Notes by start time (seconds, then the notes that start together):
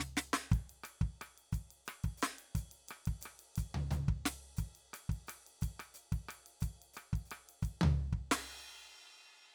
0.01 snare
0.17 snare, hi-hat pedal
0.34 snare
0.51 kick, hi-hat pedal, ride
0.70 ride
0.84 cross-stick, hi-hat pedal, ride
1.02 kick
1.22 cross-stick, ride
1.38 ride
1.53 kick, hi-hat pedal, ride
1.71 ride
1.86 cross-stick, hi-hat pedal, ride
2.04 kick, ride
2.18 hi-hat pedal
2.23 snare, ride
2.39 ride
2.56 kick, hi-hat pedal, ride
2.72 ride
2.88 cross-stick, hi-hat pedal, ride
3.06 kick, ride
3.22 hi-hat pedal, ride
3.26 cross-stick
3.40 ride
3.56 kick, hi-hat pedal, ride
3.75 floor tom, high tom
3.91 floor tom, hi-hat pedal, high tom
4.09 kick
4.26 snare, ride
4.57 kick, hi-hat pedal, ride
4.76 ride
4.94 cross-stick, hi-hat pedal, ride
5.10 kick, ride
5.28 cross-stick, hi-hat pedal, ride
5.47 ride
5.62 kick, hi-hat pedal, ride
5.80 cross-stick, ride
5.95 hi-hat pedal, ride
6.13 kick, ride
6.29 cross-stick, hi-hat pedal, ride
6.47 ride
6.61 kick, hi-hat pedal, ride
6.82 ride
6.94 cross-stick, hi-hat pedal, ride
7.14 kick, ride
7.26 hi-hat pedal
7.32 cross-stick, ride
7.49 ride
7.63 kick, hi-hat pedal, ride
7.82 floor tom, high tom
8.13 kick
8.32 snare, crash